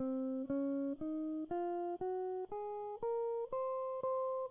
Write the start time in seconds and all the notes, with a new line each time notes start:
0.00 C4
0.50 C#4
1.01 D#4
1.51 F4
2.01 F#4
2.52 G#4
3.02 A#4
3.53 C5
4.04 C5